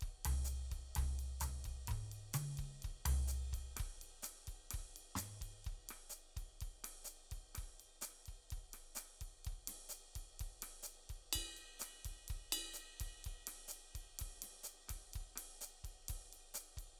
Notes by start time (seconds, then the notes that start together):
0.01 kick, ride
0.08 kick
0.25 floor tom, ride
0.45 hi-hat pedal, ride
0.72 kick, ride
0.77 kick
0.95 kick, floor tom, ride
1.04 kick
1.19 ride
1.40 floor tom, hi-hat pedal, ride
1.64 kick, ride
1.71 kick
1.88 kick, mid tom, ride
1.97 kick
2.12 ride
2.33 hi-hat pedal, high tom, ride
2.57 kick, ride
2.64 kick
2.82 kick, ride
2.90 kick
3.06 floor tom, ride
3.28 hi-hat pedal, ride
3.50 kick, snare, ride
3.58 kick
3.76 kick, cross-stick, snare, ride
3.86 kick
4.02 ride
4.23 cross-stick, hi-hat pedal, ride
4.47 kick, ride
4.71 kick, cross-stick, ride
4.79 kick
4.96 ride
5.15 snare, hi-hat pedal, mid tom, ride
5.41 kick, ride
5.65 kick, ride
5.72 kick
5.89 cross-stick, ride
6.10 hi-hat pedal, ride
6.37 kick, ride
6.42 kick
6.61 kick, ride
6.67 kick
6.84 cross-stick, ride
7.05 hi-hat pedal, ride
7.31 kick, ride
7.37 kick
7.55 kick, cross-stick, ride
7.63 kick
7.80 ride
8.01 cross-stick, snare, hi-hat pedal, ride
8.26 kick, ride
8.51 kick, ride
8.57 kick
8.74 cross-stick, ride
8.95 cross-stick, hi-hat pedal, ride
9.21 kick, ride
9.45 kick, ride
9.52 kick
9.68 snare, ride
9.89 hi-hat pedal, ride
10.16 kick, ride
10.40 kick, ride
10.46 kick
10.62 cross-stick, ride
10.83 hi-hat pedal, ride
11.10 kick, ride
11.33 kick, ride bell
11.41 kick
11.57 ride
11.80 cross-stick, hi-hat pedal, ride
12.05 kick, ride
12.11 kick
12.28 kick, ride
12.36 kick
12.52 ride bell
12.74 hi-hat pedal, ride
13.00 kick, ride
13.06 kick
13.25 kick, ride
13.31 kick
13.47 cross-stick, ride
13.68 hi-hat pedal, ride
13.95 kick, ride
14.19 kick, cross-stick, ride
14.26 kick
14.42 snare, ride
14.64 hi-hat pedal, ride
14.89 kick, cross-stick, snare, ride
14.95 kick
15.14 kick, ride
15.21 kick
15.36 cross-stick, ride
15.61 hi-hat pedal, ride
15.84 kick, ride
16.08 kick, snare, ride
16.15 kick
16.33 ride
16.54 cross-stick, hi-hat pedal, ride
16.77 kick, ride